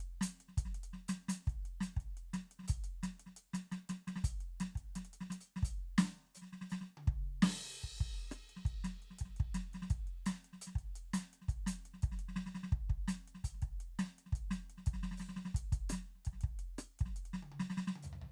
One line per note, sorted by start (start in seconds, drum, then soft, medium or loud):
0.01 closed hi-hat soft
0.22 closed hi-hat loud
0.22 snare medium
0.41 closed hi-hat soft
0.49 snare soft
0.58 kick soft
0.58 closed hi-hat medium
0.66 snare soft
0.75 closed hi-hat soft
0.84 closed hi-hat medium
0.94 snare soft
1.09 closed hi-hat medium
1.09 snare medium
1.29 open hi-hat loud
1.29 snare medium
1.46 kick soft
1.46 hi-hat pedal soft
1.50 closed hi-hat soft
1.66 closed hi-hat soft
1.81 closed hi-hat medium
1.81 snare medium
1.97 kick soft
1.97 closed hi-hat soft
2.18 closed hi-hat soft
2.34 snare medium
2.34 closed hi-hat medium
2.52 closed hi-hat soft
2.60 snare soft
2.64 snare soft
2.69 closed hi-hat medium
2.69 kick soft
2.85 closed hi-hat medium
3.04 snare medium
3.04 closed hi-hat medium
3.20 closed hi-hat soft
3.27 snare soft
3.37 closed hi-hat medium
3.54 snare medium
3.54 closed hi-hat medium
3.72 snare soft
3.72 closed hi-hat soft
3.90 snare soft
3.90 closed hi-hat medium
4.08 snare soft
4.08 closed hi-hat soft
4.16 snare soft
4.25 closed hi-hat medium
4.25 kick soft
4.41 closed hi-hat soft
4.61 snare medium
4.61 closed hi-hat medium
4.76 kick soft
4.76 closed hi-hat soft
4.96 snare soft
4.96 closed hi-hat medium
5.06 closed hi-hat soft
5.14 closed hi-hat medium
5.21 snare soft
5.31 snare soft
5.31 closed hi-hat medium
5.41 closed hi-hat soft
5.57 snare soft
5.63 open hi-hat medium
5.63 kick soft
5.99 open hi-hat medium
5.99 snare loud
6.35 snare soft
6.35 hi-hat pedal medium
6.42 snare soft
6.53 snare soft
6.62 snare soft
6.70 snare medium
6.70 hi-hat pedal soft
6.82 snare soft
6.98 high tom medium
7.08 kick medium
7.43 snare loud
7.43 crash medium
7.83 kick soft
7.83 closed hi-hat soft
7.88 snare soft
7.99 kick soft
7.99 closed hi-hat soft
8.15 closed hi-hat soft
8.32 cross-stick medium
8.32 closed hi-hat medium
8.50 closed hi-hat soft
8.57 snare soft
8.66 kick soft
8.66 closed hi-hat soft
8.85 snare medium
8.85 closed hi-hat medium
9.03 closed hi-hat soft
9.11 snare soft
9.19 kick soft
9.19 closed hi-hat medium
9.26 snare soft
9.37 kick soft
9.37 closed hi-hat soft
9.55 snare medium
9.55 closed hi-hat medium
9.74 snare soft
9.74 closed hi-hat soft
9.83 snare soft
9.91 kick soft
9.91 closed hi-hat medium
10.08 closed hi-hat soft
10.27 closed hi-hat medium
10.27 snare medium
10.45 closed hi-hat soft
10.54 snare soft
10.62 closed hi-hat medium
10.68 snare soft
10.76 kick soft
10.76 closed hi-hat soft
10.96 closed hi-hat medium
11.14 closed hi-hat medium
11.14 snare medium
11.34 closed hi-hat soft
11.42 snare soft
11.49 kick soft
11.49 closed hi-hat medium
11.67 closed hi-hat medium
11.67 snare medium
11.86 closed hi-hat soft
11.94 snare soft
12.03 kick medium
12.03 closed hi-hat medium
12.12 snare soft
12.20 closed hi-hat soft
12.29 snare soft
12.37 snare medium
12.47 snare soft
12.55 snare soft
12.64 snare soft
12.73 kick medium
12.90 kick soft
13.08 closed hi-hat medium
13.08 snare medium
13.28 closed hi-hat soft
13.35 snare soft
13.45 closed hi-hat medium
13.45 kick soft
13.55 snare soft
13.63 kick soft
13.63 closed hi-hat soft
13.81 closed hi-hat soft
14.00 snare medium
14.00 closed hi-hat medium
14.19 closed hi-hat soft
14.27 snare soft
14.33 kick soft
14.33 closed hi-hat medium
14.51 snare medium
14.51 closed hi-hat medium
14.71 closed hi-hat soft
14.78 snare soft
14.87 kick soft
14.87 closed hi-hat medium
14.94 snare soft
15.04 snare soft
15.12 snare soft
15.18 snare soft
15.18 hi-hat pedal soft
15.29 snare soft
15.37 snare soft
15.46 snare soft
15.55 kick soft
15.55 closed hi-hat medium
15.73 kick soft
15.73 closed hi-hat medium
15.90 open hi-hat medium
15.90 cross-stick medium
15.90 snare medium
16.16 snare soft
16.26 kick soft
16.26 open hi-hat medium
16.33 snare soft
16.42 kick soft
16.42 open hi-hat soft
16.60 open hi-hat soft
16.79 open hi-hat medium
16.79 cross-stick medium
17.00 kick soft
17.00 open hi-hat soft
17.06 snare soft
17.17 open hi-hat medium
17.26 open hi-hat soft
17.34 snare soft
17.43 high tom medium
17.52 high tom medium
17.60 snare medium
17.71 snare soft
17.71 hi-hat pedal soft
17.78 snare medium
17.88 snare medium
17.96 high tom medium
18.03 hi-hat pedal medium
18.03 floor tom medium
18.14 floor tom medium
18.22 floor tom medium